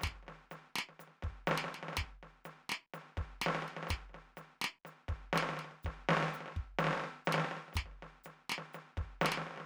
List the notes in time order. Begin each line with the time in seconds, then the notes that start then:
0.01 kick, snare, hi-hat pedal
0.04 snare
0.07 kick, snare
0.16 snare
0.23 snare
0.27 snare
0.34 snare
0.51 snare, hi-hat pedal
0.76 snare
0.79 snare
0.89 snare
0.99 snare, hi-hat pedal
1.08 snare
1.16 snare
1.22 kick, snare
1.29 kick
1.47 snare, hi-hat pedal
1.51 snare
1.58 snare
1.64 snare
1.68 snare
1.74 snare
1.79 snare
1.83 snare
1.88 snare
1.93 snare, hi-hat pedal
1.97 kick, snare
2.11 snare
2.23 snare
2.44 snare, hi-hat pedal
2.69 snare
2.72 snare
2.94 snare, hi-hat pedal
3.02 snare
3.09 snare
3.17 kick, snare
3.42 snare, hi-hat pedal
3.46 snare
3.48 snare
3.55 snare
3.62 snare
3.68 snare
3.73 snare
3.77 snare
3.83 snare
3.87 kick, snare, hi-hat pedal
3.90 snare
4.09 snare
4.14 snare
4.37 snare, hi-hat pedal
4.61 snare
4.64 snare
4.85 snare, hi-hat pedal
4.92 snare
5.08 kick, snare
5.33 snare, hi-hat pedal
5.36 snare
5.38 snare
5.43 snare
5.49 snare
5.54 snare
5.57 snare
5.59 snare
5.65 snare
5.71 snare
5.83 kick, snare, hi-hat pedal
6.09 snare
6.11 snare
6.13 snare
6.17 snare
6.20 snare
6.23 snare
6.28 snare
6.33 snare, hi-hat pedal
6.41 snare
6.46 snare
6.48 snare
6.52 kick, snare
6.57 snare
6.79 snare, hi-hat pedal
6.84 snare
6.87 snare
6.91 snare
6.93 snare
6.98 snare
7.00 snare
7.04 snare
7.25 snare, hi-hat pedal
7.32 snare
7.34 snare
7.38 snare
7.40 snare
7.45 snare
7.51 snare
7.57 snare
7.62 snare
7.68 snare
7.73 kick, snare, hi-hat pedal
7.77 snare
7.81 kick
7.84 kick, snare
7.91 snare
8.02 snare
8.24 snare, hi-hat pedal
8.49 snare
8.52 snare
8.58 snare
8.73 snare, hi-hat pedal
8.74 snare
8.97 kick, snare
9.03 kick
9.21 snare, hi-hat pedal
9.25 snare
9.32 snare
9.38 snare
9.42 snare
9.47 snare
9.51 snare
9.54 snare
9.56 snare
9.58 snare
9.60 snare